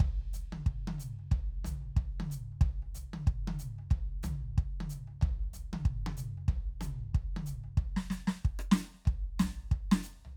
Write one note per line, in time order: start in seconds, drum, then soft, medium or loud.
0.01 kick medium
0.01 floor tom loud
0.22 high tom soft
0.34 floor tom medium
0.34 hi-hat pedal medium
0.53 high tom loud
0.67 kick medium
0.67 floor tom soft
0.88 high tom loud
0.99 floor tom soft
0.99 hi-hat pedal medium
1.20 high tom soft
1.32 kick medium
1.32 floor tom medium
1.52 kick soft
1.65 floor tom medium
1.65 hi-hat pedal medium
1.65 high tom loud
1.82 high tom soft
1.97 kick medium
1.97 floor tom medium
2.21 high tom loud
2.31 floor tom soft
2.31 hi-hat pedal medium
2.53 high tom soft
2.62 kick loud
2.62 floor tom medium
2.83 high tom soft
2.96 floor tom medium
2.96 hi-hat pedal medium
3.14 high tom loud
3.27 kick medium
3.27 floor tom soft
3.48 high tom loud
3.60 kick soft
3.60 floor tom soft
3.60 hi-hat pedal medium
3.79 high tom soft
3.91 kick medium
3.91 floor tom medium
4.24 floor tom medium
4.24 hi-hat pedal medium
4.24 high tom loud
4.59 kick medium
4.59 floor tom soft
4.81 high tom loud
4.90 kick soft
4.90 floor tom soft
4.90 hi-hat pedal medium
5.08 high tom soft
5.22 kick medium
5.22 floor tom loud
5.44 high tom soft
5.54 floor tom medium
5.54 hi-hat pedal medium
5.74 high tom loud
5.86 kick medium
5.86 floor tom soft
6.07 high tom loud
6.18 floor tom soft
6.18 hi-hat pedal medium
6.38 high tom soft
6.49 kick medium
6.49 floor tom medium
6.82 floor tom medium
6.82 hi-hat pedal medium
6.82 high tom loud
7.15 kick medium
7.15 floor tom medium
7.37 high tom loud
7.47 floor tom medium
7.47 hi-hat pedal medium
7.65 high tom soft
7.78 kick medium
7.78 floor tom medium
7.97 snare loud
8.11 snare medium
8.11 hi-hat pedal medium
8.28 snare loud
8.46 kick medium
8.60 cross-stick medium
8.72 snare loud
8.77 hi-hat pedal medium
8.95 snare soft
9.06 kick medium
9.06 floor tom medium
9.40 snare loud
9.40 floor tom medium
9.40 hi-hat pedal medium
9.58 snare soft
9.72 kick medium
9.72 floor tom soft
9.92 snare loud
10.04 floor tom soft
10.04 hi-hat pedal medium
10.26 floor tom medium